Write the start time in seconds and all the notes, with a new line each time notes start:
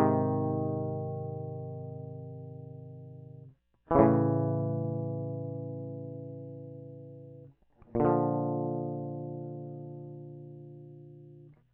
0.00 G#2 C3 D#3
3.92 E3
3.97 C#3
4.01 A2
7.97 A#2
8.01 D3
8.06 F3
8.10 A3